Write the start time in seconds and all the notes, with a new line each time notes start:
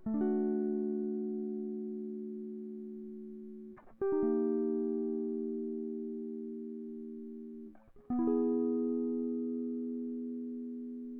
0.07 A3
0.15 D4
0.22 F#4
3.51 F#4
4.02 G4
4.13 D#4
4.24 A#3
8.11 B3
8.19 E4
8.28 G#4